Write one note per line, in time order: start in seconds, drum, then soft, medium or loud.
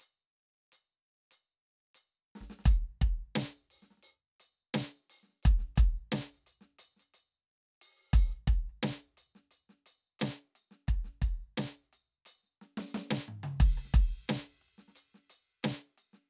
0.00 hi-hat pedal medium
0.72 hi-hat pedal medium
1.31 hi-hat pedal medium
1.95 hi-hat pedal medium
2.35 snare medium
2.40 kick soft
2.40 snare soft
2.50 snare medium
2.59 snare soft
2.64 kick loud
2.64 percussion medium
2.88 snare soft
3.01 kick loud
3.35 closed hi-hat loud
3.35 snare loud
3.70 percussion medium
3.82 snare soft
3.90 snare soft
3.97 snare soft
4.03 percussion medium
4.08 hi-hat pedal soft
4.40 closed hi-hat medium
4.74 closed hi-hat loud
4.74 snare loud
4.87 snare soft
5.10 percussion medium
5.17 percussion soft
5.23 snare soft
5.28 snare soft
5.32 snare soft
5.43 kick loud
5.43 hi-hat pedal soft
5.43 percussion medium
5.59 snare soft
5.76 closed hi-hat medium
5.76 kick loud
6.12 closed hi-hat loud
6.12 snare loud
6.34 snare soft
6.34 hi-hat pedal soft
6.46 closed hi-hat soft
6.61 snare soft
6.79 percussion medium
6.96 snare soft
6.96 hi-hat pedal soft
7.14 closed hi-hat medium
7.82 percussion medium
8.13 kick loud
8.13 percussion medium
8.47 kick loud
8.47 closed hi-hat soft
8.69 kick soft
8.83 closed hi-hat loud
8.83 snare loud
9.17 closed hi-hat medium
9.35 snare soft
9.51 closed hi-hat soft
9.69 snare soft
9.86 closed hi-hat medium
10.19 closed hi-hat medium
10.19 snare loud
10.55 closed hi-hat medium
10.71 snare soft
10.87 kick medium
10.87 closed hi-hat soft
11.04 snare soft
11.22 closed hi-hat soft
11.22 kick medium
11.57 closed hi-hat loud
11.57 snare loud
11.82 hi-hat pedal soft
11.93 closed hi-hat medium
12.25 closed hi-hat medium
12.25 hi-hat pedal medium
12.43 snare soft
12.61 snare soft
12.77 snare medium
12.88 hi-hat pedal medium
12.94 snare loud
13.11 snare loud
13.11 hi-hat pedal soft
13.28 mid tom medium
13.43 high tom loud
13.60 kick loud
13.60 crash soft
13.77 cross-stick medium
13.85 snare soft
13.94 closed hi-hat medium
13.94 kick loud
14.28 closed hi-hat loud
14.28 snare loud
14.28 hi-hat pedal medium
14.61 closed hi-hat soft
14.68 closed hi-hat soft
14.78 snare soft
14.88 snare soft
14.95 hi-hat pedal medium
14.95 percussion medium
15.14 snare soft
15.30 closed hi-hat medium
15.63 closed hi-hat medium
15.63 snare loud
15.98 closed hi-hat medium
16.13 snare soft